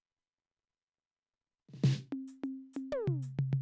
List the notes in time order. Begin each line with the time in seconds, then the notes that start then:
1.69 snare
1.73 snare
1.77 snare
1.83 snare, hi-hat pedal
2.12 high tom
2.27 hi-hat pedal
2.43 open hi-hat, high tom
2.73 hi-hat pedal, high tom
2.92 high tom
3.07 floor tom
3.22 hi-hat pedal
3.39 floor tom
3.53 floor tom